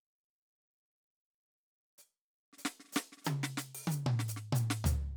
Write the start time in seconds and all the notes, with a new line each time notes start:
1.98 hi-hat pedal
2.53 snare
2.57 snare, hi-hat pedal
2.61 snare
2.65 snare
2.80 snare
2.84 snare
2.88 snare
2.91 snare, hi-hat pedal
2.96 snare
3.12 snare
3.17 snare
3.22 snare, hi-hat pedal
3.27 high tom
3.43 snare
3.57 snare, hi-hat pedal
3.75 closed hi-hat
3.87 hi-hat pedal, open hi-hat, high tom
4.06 mid tom
4.19 snare
4.28 hi-hat pedal
4.36 snare
4.52 hi-hat pedal, mid tom
4.70 snare
4.84 floor tom, hi-hat pedal